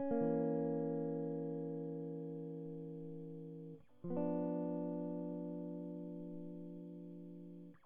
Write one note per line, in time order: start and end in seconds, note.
0.00 3.76 C#4
0.11 3.78 A#3
0.21 3.78 E3
4.05 7.73 F3
4.11 7.42 B3
4.17 7.73 D4